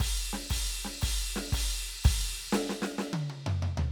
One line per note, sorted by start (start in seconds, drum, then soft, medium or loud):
0.01 kick medium
0.01 crash loud
0.33 snare medium
0.50 kick medium
0.50 crash loud
0.85 snare medium
1.01 kick medium
1.01 crash loud
1.36 snare medium
1.52 kick medium
1.52 crash loud
2.04 kick loud
2.04 crash loud
2.52 snare loud
2.69 snare medium
2.82 snare loud
2.98 snare loud
3.13 high tom loud
3.30 high tom medium
3.46 mid tom loud
3.62 mid tom loud
3.77 floor tom loud